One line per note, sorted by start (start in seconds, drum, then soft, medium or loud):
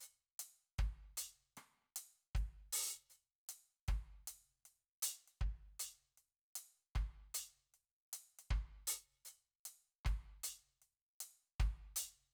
0.01 closed hi-hat soft
0.01 hi-hat pedal medium
0.40 closed hi-hat medium
0.79 kick medium
0.79 cross-stick soft
0.79 closed hi-hat soft
1.18 closed hi-hat medium
1.57 cross-stick soft
1.57 closed hi-hat soft
1.96 closed hi-hat medium
2.35 kick medium
2.35 closed hi-hat soft
2.73 open hi-hat loud
3.10 closed hi-hat soft
3.10 hi-hat pedal soft
3.49 closed hi-hat medium
3.88 kick medium
3.88 cross-stick soft
3.88 closed hi-hat soft
4.28 closed hi-hat medium
4.66 closed hi-hat soft
5.03 closed hi-hat loud
5.28 closed hi-hat soft
5.41 kick medium
5.80 closed hi-hat medium
6.18 closed hi-hat soft
6.56 closed hi-hat medium
6.96 kick medium
6.96 cross-stick soft
6.96 closed hi-hat soft
7.35 closed hi-hat medium
7.74 closed hi-hat soft
8.13 closed hi-hat medium
8.39 closed hi-hat soft
8.51 kick medium
8.51 cross-stick medium
8.88 open hi-hat loud
9.25 closed hi-hat soft
9.25 hi-hat pedal medium
9.66 closed hi-hat medium
10.05 kick medium
10.05 cross-stick medium
10.05 closed hi-hat soft
10.44 closed hi-hat medium
10.82 closed hi-hat soft
11.21 closed hi-hat medium
11.60 kick medium
11.60 cross-stick soft
11.60 closed hi-hat soft
11.96 open hi-hat medium